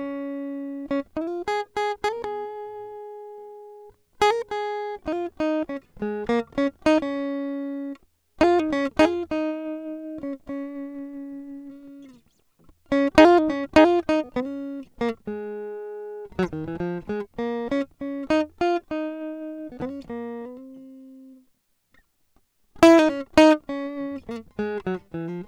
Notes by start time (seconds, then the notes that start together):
0.01 C#4
0.92 C#4
1.18 E4
1.29 F4
1.49 G#4
1.78 G#4
2.05 G#4
2.25 G#4
4.23 G#4
4.32 A#4
4.53 G#4
5.09 F4
5.41 D#4
5.71 C#4
6.04 G#3
6.30 A#3
6.59 C#4
6.87 D#4
7.04 C#4
8.42 F4 G#4
8.60 D#4 G#4
8.74 C#4
9.01 F4 G#4
9.32 D#4
10.25 C#4
10.49 C#4
12.93 C#4
13.19 E4 G#4
13.35 E4
13.40 G#4
13.44 D#4
13.51 C#4
13.77 D#4 G#4
13.86 F4
14.10 D#4
14.38 C#4
15.02 A#3
15.29 G#3
16.40 F3
16.54 D#3
16.70 E3
16.82 F3
17.11 G#3
17.40 A#3
17.73 C#4
18.02 C#4
18.31 D#4
18.62 F4
18.92 D#4
19.84 C4
20.11 A#3
20.47 B3
22.84 E4
23.00 D#4
23.11 C#4
23.39 D#4
23.70 C#4
24.30 A#3
24.60 G#3
24.88 F#3
25.16 E3
25.30 F3